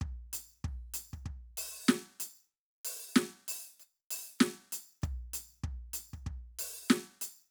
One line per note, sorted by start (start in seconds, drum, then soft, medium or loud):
0.01 kick medium
0.33 percussion loud
0.64 kick medium
0.68 crash soft
0.94 percussion loud
1.13 kick soft
1.26 kick medium
1.57 percussion loud
1.87 snare loud
1.87 percussion medium
2.20 percussion loud
2.85 percussion loud
3.15 snare loud
3.15 percussion soft
3.48 percussion loud
3.80 percussion soft
4.11 percussion loud
4.39 snare loud
4.39 percussion soft
4.72 percussion loud
5.02 kick medium
5.02 percussion soft
5.33 percussion loud
5.64 kick medium
5.93 percussion loud
6.13 kick soft
6.26 kick medium
6.59 percussion loud
6.89 snare loud
6.89 percussion medium
7.21 percussion loud